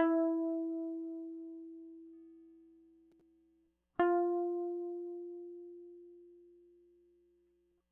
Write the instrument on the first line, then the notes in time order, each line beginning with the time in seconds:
electric guitar
0.00 E4
4.00 F4